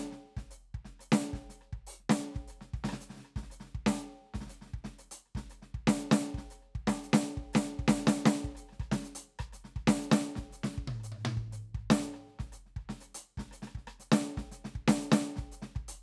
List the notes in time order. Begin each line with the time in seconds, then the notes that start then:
0.01 cross-stick, snare, hi-hat pedal
0.13 snare
0.38 kick, snare
0.51 cross-stick, closed hi-hat, hi-hat pedal
0.75 kick, cross-stick
0.86 snare
0.97 snare
1.00 cross-stick, snare, hi-hat pedal
1.13 snare
1.34 kick, snare
1.41 snare
1.50 snare, closed hi-hat, hi-hat pedal
1.62 cross-stick
1.74 kick, cross-stick
1.88 open hi-hat
1.93 hi-hat pedal
2.00 snare
2.10 snare
2.15 cross-stick
2.26 snare
2.35 kick, snare
2.41 snare
2.48 cross-stick, hi-hat pedal
2.53 closed hi-hat
2.62 snare
2.74 kick, snare
2.85 snare
2.90 cross-stick, snare
3.01 cross-stick, hi-hat pedal
3.10 snare
3.14 snare
3.17 snare
3.19 snare
3.25 cross-stick, snare
3.37 kick, snare
3.43 snare
3.51 cross-stick, snare, hi-hat pedal
3.61 snare
3.65 snare
3.76 kick, cross-stick
3.87 snare
3.95 snare
3.97 snare, hi-hat pedal
4.19 snare
4.26 snare
4.35 kick, snare
4.41 snare
4.47 snare
4.49 snare, closed hi-hat, hi-hat pedal
4.62 snare
4.66 snare
4.74 kick
4.85 snare
4.99 cross-stick, snare, hi-hat pedal
5.12 closed hi-hat
5.27 cross-stick
5.36 kick, snare
5.50 cross-stick, snare, hi-hat pedal
5.63 snare
5.75 kick, cross-stick
5.88 snare
5.99 snare, hi-hat pedal
6.01 snare
6.12 snare
6.35 kick, snare
6.51 cross-stick, hi-hat pedal
6.63 cross-stick
6.76 kick, snare
6.88 snare
7.00 snare, hi-hat pedal
7.14 snare
7.38 kick
7.54 cross-stick, snare, hi-hat pedal
7.62 cross-stick
7.78 kick, cross-stick
7.89 snare
7.99 snare
8.08 snare, hi-hat pedal
8.18 snare
8.26 snare
8.45 kick
8.56 cross-stick, hi-hat pedal
8.70 cross-stick, snare
8.81 kick, cross-stick, snare
8.92 snare
9.02 cross-stick, snare, hi-hat pedal
9.16 closed hi-hat
9.40 kick, cross-stick
9.53 cross-stick, snare, hi-hat pedal
9.65 snare
9.77 kick, cross-stick
9.88 snare
10.00 cross-stick, snare, hi-hat pedal
10.12 snare
10.18 cross-stick
10.25 snare
10.36 kick, snare
10.50 snare, hi-hat pedal, open hi-hat
10.64 snare
10.75 kick, cross-stick, snare
10.88 high tom
11.01 cross-stick, hi-hat pedal
11.13 high tom
11.18 snare
11.26 high tom
11.38 kick
11.53 snare, hi-hat pedal
11.75 kick, cross-stick
11.91 snare
11.97 cross-stick
12.03 snare, hi-hat pedal
12.15 cross-stick
12.28 snare
12.40 kick, snare
12.53 cross-stick, closed hi-hat, hi-hat pedal
12.67 snare
12.77 kick, cross-stick
12.90 snare
13.01 cross-stick, snare, closed hi-hat, hi-hat pedal
13.15 closed hi-hat
13.38 kick, snare
13.50 cross-stick, snare, hi-hat pedal
13.63 snare
13.68 cross-stick
13.76 kick, snare
13.88 cross-stick
14.00 snare, hi-hat pedal
14.13 snare
14.26 snare
14.38 kick, snare
14.52 snare, closed hi-hat, hi-hat pedal
14.65 snare
14.76 kick, snare
14.89 snare
15.02 snare, hi-hat pedal
15.13 snare
15.26 cross-stick
15.37 kick, snare
15.51 snare, hi-hat pedal
15.63 snare
15.76 kick, cross-stick
15.89 closed hi-hat